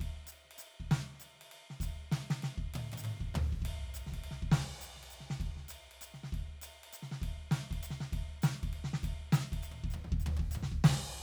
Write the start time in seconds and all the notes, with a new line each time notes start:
0.01 kick, ride
0.14 snare
0.28 percussion
0.33 ride
0.45 snare
0.52 ride
0.59 percussion
0.63 ride
0.81 kick
0.92 snare, ride
1.15 snare
1.21 ride, percussion
1.42 ride
1.52 ride
1.71 snare
1.81 kick, ride, percussion
2.12 snare, ride
2.31 snare, ride
2.43 snare, ride
2.58 kick
2.75 high tom, ride
2.93 high tom, ride
2.98 percussion
3.05 high tom, ride
3.21 kick
3.35 floor tom, mid tom
3.53 kick
3.62 kick, ride
3.95 ride, percussion
4.07 snare
4.13 kick, ride
4.24 ride
4.32 snare
4.43 kick
4.52 snare, crash
4.82 ride, percussion
4.97 snare
5.04 ride
5.11 ride, percussion
5.21 snare
5.31 snare
5.41 kick, ride
5.58 snare
5.64 snare
5.69 ride, percussion
5.92 ride
6.02 ride, percussion
6.14 snare
6.24 snare
6.33 kick, ride
6.56 snare
6.62 ride, percussion
6.84 ride
6.94 ride, percussion
7.03 snare
7.12 snare
7.22 kick, ride
7.52 snare, ride
7.71 kick, ride
7.83 ride, percussion
7.91 snare
8.01 snare
8.13 kick, ride
8.43 snare, ride, percussion
8.64 kick, ride
8.74 ride
8.85 snare
8.94 snare
9.04 kick, ride, percussion
9.33 snare, ride, percussion
9.53 kick, ride
9.63 ride, percussion
9.72 high tom
9.84 kick
9.91 floor tom, percussion
10.05 mid tom
10.13 kick
10.20 percussion
10.27 floor tom
10.37 kick, high tom
10.52 floor tom, percussion
10.63 snare
10.72 kick
10.85 snare, crash